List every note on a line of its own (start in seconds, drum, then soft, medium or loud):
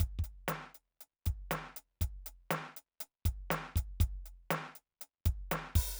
0.00 kick medium
0.00 closed hi-hat loud
0.19 kick soft
0.24 closed hi-hat medium
0.48 snare medium
0.48 closed hi-hat loud
0.74 closed hi-hat medium
1.01 closed hi-hat medium
1.26 kick medium
1.26 closed hi-hat loud
1.51 snare medium
1.51 closed hi-hat loud
1.76 closed hi-hat loud
2.01 kick medium
2.01 closed hi-hat loud
2.26 closed hi-hat loud
2.51 snare medium
2.51 closed hi-hat loud
2.76 closed hi-hat medium
3.00 closed hi-hat loud
3.25 kick medium
3.25 closed hi-hat loud
3.50 snare medium
3.50 closed hi-hat loud
3.76 kick medium
3.76 closed hi-hat loud
4.00 kick medium
4.00 closed hi-hat loud
4.26 closed hi-hat medium
4.50 snare medium
4.50 closed hi-hat loud
4.75 closed hi-hat medium
5.01 closed hi-hat loud
5.25 kick medium
5.25 closed hi-hat loud
5.51 snare medium
5.51 closed hi-hat loud
5.75 kick medium
5.75 open hi-hat loud